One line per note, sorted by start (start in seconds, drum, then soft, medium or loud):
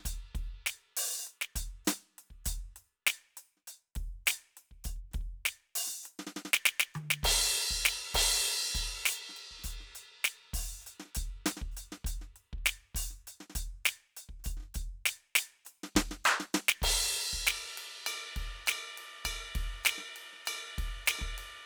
0.01 snare soft
0.01 hi-hat pedal soft
0.06 closed hi-hat medium
0.06 kick soft
0.14 kick soft
0.35 kick soft
0.35 closed hi-hat soft
0.42 kick soft
0.67 closed hi-hat medium
0.67 snare medium
0.97 open hi-hat loud
1.23 hi-hat pedal soft
1.27 closed hi-hat soft
1.42 snare medium
1.56 closed hi-hat medium
1.56 kick soft
1.62 kick soft
1.85 closed hi-hat loud
1.85 snare loud
1.85 hi-hat pedal soft
2.19 closed hi-hat soft
2.31 kick soft
2.45 closed hi-hat medium
2.45 kick soft
2.45 hi-hat pedal soft
2.77 closed hi-hat soft
3.07 closed hi-hat medium
3.07 snare loud
3.38 closed hi-hat medium
3.57 snare soft
3.68 closed hi-hat medium
3.96 kick soft
3.96 closed hi-hat soft
4.26 closed hi-hat loud
4.26 snare loud
4.26 hi-hat pedal soft
4.57 closed hi-hat soft
4.71 kick soft
4.84 open hi-hat medium
4.84 kick soft
4.84 hi-hat pedal soft
4.96 kick soft
5.12 kick soft
5.12 snare soft
5.12 closed hi-hat soft
5.21 kick soft
5.46 closed hi-hat medium
5.46 snare medium
5.76 open hi-hat loud
5.88 snare soft
6.04 closed hi-hat soft
6.04 hi-hat pedal soft
6.20 snare soft
6.27 snare soft
6.37 snare medium
6.46 snare soft
6.54 snare loud
6.66 snare loud
6.66 hi-hat pedal soft
6.80 snare loud
6.95 hi-hat pedal soft
6.95 high tom medium
7.11 snare medium
7.24 kick soft
7.24 crash loud
7.33 kick soft
7.39 snare soft
7.55 closed hi-hat soft
7.55 snare soft
7.71 kick soft
7.86 open hi-hat medium
7.86 snare loud
7.86 hi-hat pedal soft
8.12 kick soft
8.12 snare soft
8.12 crash loud
8.44 hi-hat pedal medium
8.59 snare soft
8.63 snare soft
8.65 snare soft
8.71 snare soft
8.75 closed hi-hat medium
8.75 kick soft
8.81 kick soft
9.06 open hi-hat loud
9.06 snare medium
9.30 snare soft
9.37 closed hi-hat soft
9.51 kick soft
9.60 snare soft
9.64 open hi-hat medium
9.64 kick soft
9.81 snare soft
9.90 snare soft
9.92 closed hi-hat soft
9.92 snare soft
10.24 closed hi-hat medium
10.24 snare medium
10.24 hi-hat pedal soft
10.54 open hi-hat medium
10.54 kick soft
10.60 kick soft
10.81 hi-hat pedal soft
10.87 closed hi-hat soft
11.00 snare soft
11.06 snare soft
11.15 closed hi-hat medium
11.15 kick soft
11.23 kick soft
11.46 closed hi-hat medium
11.46 snare medium
11.57 snare soft
11.62 kick soft
11.72 hi-hat pedal soft
11.77 closed hi-hat medium
11.93 snare soft
12.05 closed hi-hat medium
12.05 kick soft
12.11 kick soft
12.22 snare soft
12.36 closed hi-hat soft
12.53 kick soft
12.59 kick soft
12.66 closed hi-hat medium
12.66 snare loud
12.66 hi-hat pedal soft
12.95 open hi-hat medium
12.95 kick soft
13.11 snare soft
13.28 closed hi-hat soft
13.41 snare soft
13.50 snare soft
13.56 closed hi-hat medium
13.56 kick soft
13.85 closed hi-hat medium
13.85 snare loud
13.85 hi-hat pedal soft
14.17 closed hi-hat soft
14.29 kick soft
14.40 snare soft
14.45 open hi-hat medium
14.45 kick soft
14.54 kick soft
14.54 snare soft
14.57 kick soft
14.57 snare soft
14.63 snare soft
14.75 closed hi-hat medium
14.75 kick soft
14.82 kick soft
15.06 closed hi-hat medium
15.06 snare medium
15.36 closed hi-hat loud
15.36 snare loud
15.66 closed hi-hat soft
15.66 hi-hat pedal soft
15.84 snare soft
15.96 kick soft
15.96 snare loud
16.02 kick soft
16.12 snare soft
16.25 percussion loud
16.25 hi-hat pedal medium
16.40 snare medium
16.54 snare loud
16.54 hi-hat pedal soft
16.69 snare loud
16.82 kick medium
16.82 crash loud
16.93 kick soft
17.34 kick soft
17.47 snare loud
17.47 hi-hat pedal medium
17.47 ride bell loud
17.78 ride medium
18.07 hi-hat pedal medium
18.07 ride bell loud
18.37 kick soft
18.37 ride medium
18.43 kick soft
18.67 snare medium
18.67 hi-hat pedal medium
18.67 ride bell loud
18.98 ride medium
19.25 kick soft
19.25 hi-hat pedal soft
19.25 ride bell loud
19.56 kick medium
19.56 ride medium
19.84 snare loud
19.84 hi-hat pedal soft
19.84 ride bell loud
19.98 snare soft
20.16 ride medium
20.33 snare soft
20.39 snare soft
20.46 hi-hat pedal soft
20.46 ride bell loud
20.79 kick soft
20.79 ride medium
20.88 kick soft
21.07 snare loud
21.07 hi-hat pedal soft
21.07 ride bell loud
21.19 kick soft
21.19 snare soft
21.39 ride medium